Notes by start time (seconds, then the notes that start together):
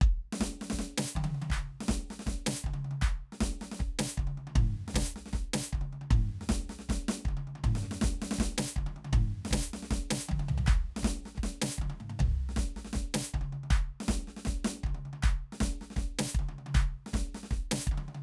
0.04 kick
0.33 snare
0.40 kick, snare
0.61 snare
0.70 kick, snare
0.79 snare
0.98 snare
1.15 kick, high tom
1.24 high tom
1.34 high tom
1.42 high tom
1.50 kick, percussion
1.80 snare
1.88 kick, snare
2.10 snare
2.19 snare
2.26 kick, snare
2.46 snare
2.64 kick, high tom
2.73 high tom
2.84 high tom
2.91 high tom
3.01 kick, percussion
3.32 snare
3.40 kick, snare
3.61 snare
3.71 snare
3.79 kick, snare
3.99 snare
4.17 kick, high tom
4.27 high tom
4.37 high tom
4.47 high tom
4.55 kick, mid tom
4.88 snare
4.94 kick, snare
5.16 snare
5.26 snare
5.33 kick, snare
5.53 snare
5.73 kick, high tom
5.81 high tom
5.91 snare, high tom
6.01 high tom
6.10 kick, mid tom
6.41 snare
6.49 kick, snare
6.69 snare
6.79 snare
6.89 kick, snare
7.08 snare
7.25 kick, high tom
7.37 high tom
7.47 high tom
7.55 high tom
7.64 kick, mid tom
7.75 snare
7.83 snare
7.91 snare
8.01 kick, snare
8.22 snare
8.31 snare
8.38 kick, snare
8.58 snare
8.76 kick, high tom
8.86 high tom
8.96 high tom
9.04 high tom
9.13 kick, mid tom
9.45 snare
9.51 kick, snare
9.73 snare
9.82 snare
9.91 kick, snare
10.10 snare
10.28 kick, high tom
10.39 high tom
10.48 floor tom
10.58 floor tom
10.66 kick, percussion
10.96 snare
11.03 kick, snare
11.25 snare
11.35 kick, snare
11.43 snare
11.62 snare
11.78 kick, high tom
11.90 high tom
12.00 mid tom
12.09 mid tom
12.19 kick, floor tom
12.49 snare
12.56 kick, snare
12.76 snare
12.85 snare
12.93 kick, snare
13.14 snare
13.34 kick, high tom
13.41 high tom
13.52 high tom
13.63 high tom
13.70 kick, percussion
14.00 snare
14.08 kick, snare
14.27 snare
14.36 snare
14.45 kick, snare
14.64 snare
14.83 kick, high tom
14.94 high tom
15.05 high tom
15.13 high tom
15.22 kick, percussion
15.52 snare
15.60 kick, snare
15.81 snare
15.90 snare
15.96 kick, snare
16.19 snare
16.34 kick
16.39 high tom
16.49 high tom
16.58 high tom
16.66 high tom
16.74 kick, percussion
17.06 snare
17.13 kick, snare
17.34 snare
17.43 snare
17.51 kick, snare
17.71 snare
17.87 kick
17.91 high tom
17.97 high tom
18.08 high tom
18.14 high tom